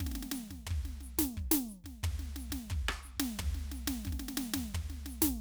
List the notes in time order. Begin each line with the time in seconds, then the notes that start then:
0.01 kick, snare
0.07 snare
0.12 snare
0.16 snare
0.23 snare
0.32 snare, hi-hat pedal
0.51 kick, snare
0.67 kick, floor tom
0.86 snare
1.01 snare, hi-hat pedal
1.19 kick, snare
1.37 kick, snare
1.52 snare
1.69 snare, hi-hat pedal
1.85 kick, snare
2.04 kick, floor tom
2.20 snare
2.37 snare, hi-hat pedal
2.51 kick, snare
2.71 kick, floor tom
2.89 cross-stick
3.04 snare, hi-hat pedal
3.17 kick, snare
3.39 kick, floor tom
3.55 snare
3.72 snare, hi-hat pedal
3.87 kick, snare
4.06 kick, snare
4.13 snare
4.20 snare
4.29 snare
4.38 snare
4.42 hi-hat pedal
4.54 kick, snare
4.75 kick, floor tom
4.90 snare
5.07 snare, hi-hat pedal
5.22 kick, snare